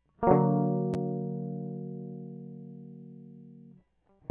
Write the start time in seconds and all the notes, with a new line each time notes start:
0.23 A#3
0.27 D3 F#3